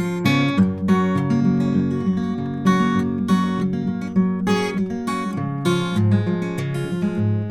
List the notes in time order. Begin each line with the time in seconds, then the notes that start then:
0.00 F3
0.06 C#4
0.27 C#3 B3 C#4
0.59 F#2
0.73 F#3
0.90 F#3 C#4 F#4
1.18 C#3
1.32 A#3
1.47 F#3
1.62 C#4
1.76 F#2
1.93 F#4
2.09 F#3
2.19 A#3
2.40 C#3
2.67 F#3 C#4 F#4
2.82 A#3
2.96 F#2
3.30 F#3 C#4 F#4
3.60 C#3 F#3
3.75 A#3
4.03 D4
4.18 F#3
4.48 F#3 C#4 G#4
4.81 F#3
4.92 A#3
5.09 C#4 F#4
5.26 G#3
5.36 C#3 E3
5.67 F3 C#4 F4
5.98 G#2
6.13 G#3
6.28 F3
6.44 C#4
6.60 C#3
6.76 F4
6.94 F3
7.04 G#3
7.19 G#2